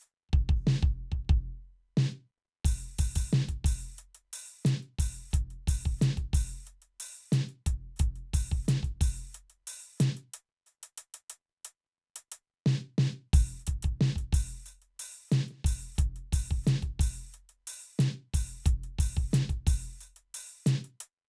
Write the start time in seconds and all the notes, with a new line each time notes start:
0.01 hi-hat pedal
0.29 kick
0.33 kick
0.49 kick
0.56 crash
0.67 snare
0.83 kick
1.12 kick
1.25 kick
1.29 kick
1.97 snare
2.65 open hi-hat, kick
2.98 open hi-hat, kick
3.15 open hi-hat, kick
3.31 snare, hi-hat pedal
3.48 kick, closed hi-hat
3.64 open hi-hat, kick
3.97 closed hi-hat, hi-hat pedal
4.15 closed hi-hat
4.33 open hi-hat
4.63 closed hi-hat, snare, hi-hat pedal
4.82 closed hi-hat
4.99 open hi-hat, kick
5.31 closed hi-hat, kick, hi-hat pedal
5.50 closed hi-hat
5.67 open hi-hat, kick
5.85 kick
5.98 closed hi-hat, snare, hi-hat pedal
6.17 kick, closed hi-hat
6.33 open hi-hat, kick
6.65 closed hi-hat, hi-hat pedal
6.82 closed hi-hat
7.00 open hi-hat
7.30 closed hi-hat, snare, hi-hat pedal
7.49 closed hi-hat
7.66 open hi-hat, kick
7.96 closed hi-hat, kick, hi-hat pedal
8.16 closed hi-hat
8.33 open hi-hat, kick
8.52 kick
8.64 snare, hi-hat pedal
8.68 closed hi-hat
8.83 kick, closed hi-hat
9.01 open hi-hat, kick
9.33 closed hi-hat, hi-hat pedal
9.50 closed hi-hat
9.67 open hi-hat
9.97 closed hi-hat, snare, hi-hat pedal
10.17 closed hi-hat
10.34 open hi-hat
10.66 hi-hat pedal
10.83 closed hi-hat
10.98 closed hi-hat
11.14 closed hi-hat
11.30 closed hi-hat
11.65 closed hi-hat
12.16 closed hi-hat
12.32 closed hi-hat
12.66 snare
12.98 snare
13.33 open hi-hat, kick
13.60 hi-hat pedal
13.67 closed hi-hat, kick
13.83 closed hi-hat, kick
14.01 snare
14.16 kick, closed hi-hat
14.33 open hi-hat, kick
14.65 open hi-hat, hi-hat pedal
14.82 closed hi-hat
14.99 open hi-hat
15.28 closed hi-hat, snare, hi-hat pedal
15.48 snare, closed hi-hat
15.64 open hi-hat, kick
15.95 closed hi-hat, kick, hi-hat pedal
16.16 closed hi-hat
16.33 open hi-hat, kick
16.51 kick
16.63 closed hi-hat, snare, hi-hat pedal
16.82 kick, closed hi-hat
16.99 open hi-hat, kick
17.33 closed hi-hat, hi-hat pedal
17.49 closed hi-hat
17.67 open hi-hat
17.98 closed hi-hat, snare, hi-hat pedal
18.33 open hi-hat, kick, hi-hat pedal
18.64 closed hi-hat, kick, hi-hat pedal
18.83 closed hi-hat
18.99 open hi-hat, kick
19.17 kick
19.31 closed hi-hat, snare, hi-hat pedal
19.49 kick, closed hi-hat
19.67 open hi-hat, kick
20.00 open hi-hat, hi-hat pedal
20.16 closed hi-hat
20.34 open hi-hat
20.66 closed hi-hat, snare, hi-hat pedal
20.84 closed hi-hat
21.00 open hi-hat